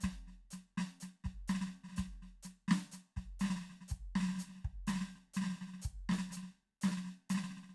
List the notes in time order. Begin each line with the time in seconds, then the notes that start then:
0.01 kick, snare, hi-hat pedal
0.04 snare
0.17 snare
0.22 snare
0.26 snare
0.28 snare
0.51 snare, hi-hat pedal
0.78 snare
0.80 snare
1.01 snare, hi-hat pedal
1.25 kick, snare
1.48 snare, hi-hat pedal
1.55 snare
1.62 snare
1.67 snare
1.75 snare
1.80 snare
1.84 snare
1.89 snare
1.93 snare
1.96 snare, hi-hat pedal
1.98 kick, snare
2.06 snare
2.11 snare
2.14 snare
2.19 snare
2.23 snare
2.43 snare, hi-hat pedal
2.69 snare
2.72 snare
2.78 snare
2.92 snare, hi-hat pedal
3.17 kick, snare
3.40 snare, hi-hat pedal
3.44 snare
3.47 snare
3.51 snare
3.57 snare
3.62 snare
3.63 snare
3.70 snare
3.81 snare
3.89 kick, snare, hi-hat pedal
4.16 snare
4.21 snare
4.23 snare
4.26 snare
4.29 snare
4.33 snare
4.36 snare
4.38 snare, hi-hat pedal
4.43 snare
4.48 snare
4.50 snare
4.56 snare
4.58 snare
4.61 kick, snare
4.66 snare
4.88 snare, hi-hat pedal
4.94 snare
4.96 snare
4.99 snare
5.02 snare
5.04 snare
5.08 snare
5.16 snare
5.34 snare, hi-hat pedal
5.42 snare
5.44 snare
5.47 snare
5.50 snare
5.53 snare
5.56 snare
5.62 snare
5.67 snare
5.74 snare
5.80 snare, hi-hat pedal
5.84 kick, snare
6.10 snare
6.12 cross-stick, snare
6.19 snare
6.24 snare
6.28 snare
6.31 snare, hi-hat pedal
6.37 snare
6.43 snare
6.47 snare
6.51 snare
6.82 snare, hi-hat pedal
6.86 cross-stick, snare
6.92 snare
6.98 snare
7.05 snare
7.07 snare
7.30 snare, hi-hat pedal
7.35 snare
7.38 snare
7.44 snare
7.50 snare
7.57 snare
7.64 snare
7.70 snare